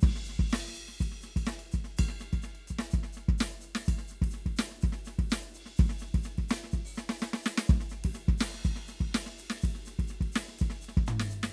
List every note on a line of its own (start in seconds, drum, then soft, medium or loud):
0.01 kick loud
0.01 hi-hat pedal medium
0.01 ride medium
0.16 snare soft
0.24 hi-hat pedal medium
0.29 snare soft
0.39 kick medium
0.49 snare loud
0.49 hi-hat pedal medium
0.49 crash medium
0.68 snare soft
0.74 hi-hat pedal medium
0.74 ride soft
0.88 snare soft
0.99 kick medium
0.99 hi-hat pedal medium
0.99 ride medium
1.12 snare soft
1.22 snare soft
1.22 hi-hat pedal medium
1.36 kick medium
1.36 ride bell medium
1.45 snare loud
1.45 hi-hat pedal medium
1.59 ride bell medium
1.72 kick medium
1.72 hi-hat pedal medium
1.72 ride bell soft
1.84 snare soft
1.97 kick loud
1.97 hi-hat pedal medium
1.97 ride bell loud
2.09 snare soft
2.19 snare soft
2.19 hi-hat pedal medium
2.33 kick medium
2.33 ride bell soft
2.42 snare soft
2.42 hi-hat pedal medium
2.55 ride bell soft
2.68 kick medium
2.68 hi-hat pedal medium
2.68 ride bell soft
2.79 snare loud
2.91 kick medium
2.91 hi-hat pedal medium
2.91 ride bell soft
3.03 snare soft
3.13 hi-hat pedal medium
3.17 snare soft
3.17 ride bell soft
3.29 kick loud
3.29 ride bell soft
3.38 snare loud
3.38 hi-hat pedal medium
3.52 ride bell soft
3.61 hi-hat pedal medium
3.65 ride bell soft
3.75 snare loud
3.85 kick medium
3.85 hi-hat pedal medium
3.85 ride bell medium
3.98 snare soft
4.08 snare soft
4.08 hi-hat pedal medium
4.08 ride soft
4.22 kick medium
4.22 ride medium
4.30 snare soft
4.30 hi-hat pedal medium
4.46 kick medium
4.46 ride soft
4.57 snare loud
4.57 hi-hat pedal medium
4.57 ride medium
4.71 snare soft
4.81 kick medium
4.81 hi-hat pedal medium
4.81 ride medium
4.92 snare medium
5.05 snare medium
5.05 hi-hat pedal medium
5.05 ride soft
5.19 kick medium
5.19 ride medium
5.30 snare loud
5.30 hi-hat pedal medium
5.44 ride medium
5.54 hi-hat pedal medium
5.54 ride medium
5.66 snare soft
5.77 kick loud
5.77 hi-hat pedal medium
5.77 ride medium
5.89 snare medium
5.99 snare soft
5.99 hi-hat pedal medium
5.99 ride soft
6.14 kick medium
6.14 ride medium
6.23 snare soft
6.23 hi-hat pedal medium
6.38 kick medium
6.38 ride soft
6.49 snare loud
6.49 hi-hat pedal medium
6.49 ride medium
6.64 snare soft
6.72 kick medium
6.72 hi-hat pedal medium
6.72 ride soft
6.85 open hi-hat medium
6.95 snare medium
6.95 hi-hat pedal medium
7.09 snare loud
7.18 snare loud
7.18 hi-hat pedal medium
7.33 snare loud
7.42 snare loud
7.42 hi-hat pedal medium
7.58 snare loud
7.67 kick loud
7.67 hi-hat pedal medium
7.67 ride soft
7.80 snare soft
7.90 snare soft
7.90 hi-hat pedal medium
8.04 kick medium
8.04 ride medium
8.14 snare medium
8.14 hi-hat pedal medium
8.29 kick loud
8.38 snare loud
8.38 hi-hat pedal medium
8.38 crash medium
8.54 snare soft
8.64 kick medium
8.64 hi-hat pedal medium
8.76 snare soft
8.87 snare soft
8.87 hi-hat pedal medium
8.87 ride medium
9.01 kick medium
9.01 ride soft
9.14 snare loud
9.14 hi-hat pedal medium
9.14 ride medium
9.26 snare medium
9.38 hi-hat pedal medium
9.38 ride medium
9.50 snare medium
9.61 kick medium
9.61 hi-hat pedal medium
9.65 ride medium
9.75 snare soft
9.85 snare soft
9.85 hi-hat pedal medium
9.85 ride medium
9.99 kick medium
9.99 ride medium
10.08 snare soft
10.08 hi-hat pedal medium
10.21 kick medium
10.21 ride medium
10.32 snare loud
10.32 hi-hat pedal medium
10.32 ride medium
10.48 snare soft
10.58 kick medium
10.58 hi-hat pedal medium
10.58 ride medium
10.70 snare medium
10.81 hi-hat pedal medium
10.81 ride medium
10.89 snare soft
10.97 kick loud
11.07 floor tom loud
11.07 hi-hat pedal medium
11.20 snare medium
11.30 hi-hat pedal medium
11.30 ride medium
11.43 snare loud